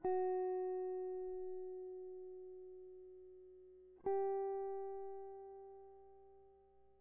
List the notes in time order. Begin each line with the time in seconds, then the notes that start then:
0.06 F#4
4.07 G4